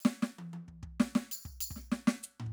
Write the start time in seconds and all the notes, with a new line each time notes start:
0.04 snare, percussion
0.23 snare
0.39 high tom
0.54 high tom
0.68 kick
0.83 kick
1.00 snare
1.16 snare
1.32 percussion
1.46 kick
1.61 percussion
1.71 kick
1.76 snare
1.92 snare
2.08 snare
2.23 floor tom
2.40 floor tom
2.47 kick